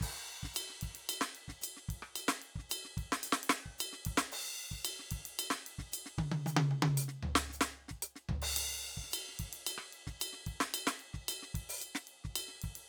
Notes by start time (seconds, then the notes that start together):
0.01 kick, hi-hat pedal, crash
0.43 kick, snare
0.54 hi-hat pedal, ride bell
0.70 snare
0.81 kick, ride
0.89 kick
0.94 snare, ride
1.09 hi-hat pedal, ride bell
1.21 snare
1.35 ride
1.48 kick, snare
1.53 kick
1.61 hi-hat pedal, ride bell
1.77 snare
1.89 kick, ride
1.95 kick
2.02 cross-stick
2.16 hi-hat pedal, ride bell
2.28 snare
2.42 ride
2.56 kick, snare
2.70 hi-hat pedal, ride bell
2.85 snare
2.97 kick, ride
3.04 kick
3.12 snare
3.23 hi-hat pedal, ride bell
3.32 snare
3.43 ride
3.50 snare
3.66 kick
3.78 hi-hat pedal, ride bell
3.93 snare
4.05 kick, ride
4.13 kick
4.16 kick, snare
4.32 hi-hat pedal, crash
4.71 kick, snare
4.85 hi-hat pedal, ride bell
4.99 snare
5.06 cross-stick
5.11 kick, ride
5.18 kick, snare
5.25 ride
5.39 hi-hat pedal, ride bell
5.50 snare
5.55 cross-stick
5.67 ride
5.79 kick, snare
5.92 hi-hat pedal, ride bell
6.06 snare
6.18 kick, high tom
6.32 high tom
6.46 hi-hat pedal, high tom
6.57 high tom
6.71 high tom
6.82 high tom
6.88 kick
6.97 closed hi-hat, hi-hat pedal
7.08 snare
7.23 floor tom
7.35 snare
7.50 snare, hi-hat pedal
7.61 snare
7.88 kick, snare
8.02 closed hi-hat, hi-hat pedal
8.16 snare
8.29 kick, floor tom
8.35 kick
8.42 crash
8.56 hi-hat pedal, ride
8.83 ride
8.97 kick
9.03 snare
9.11 hi-hat pedal, ride bell
9.29 snare
9.35 cross-stick
9.39 kick, ride
9.46 kick, snare
9.53 snare, ride
9.67 hi-hat pedal, ride bell
9.78 cross-stick
9.93 ride
10.07 kick, snare
10.20 hi-hat pedal, ride bell
10.33 snare
10.47 kick, ride
10.60 snare
10.74 hi-hat pedal, ride bell
10.87 snare
10.99 ride
11.14 kick, snare
11.28 hi-hat pedal, ride bell
11.43 snare
11.54 kick, ride
11.61 kick
11.69 open hi-hat
11.80 hi-hat pedal, ride bell
11.95 snare
12.07 ride
12.24 kick, snare
12.36 hi-hat pedal, ride bell
12.48 snare
12.56 cross-stick
12.62 kick, ride
12.70 kick
12.76 snare, ride
12.79 snare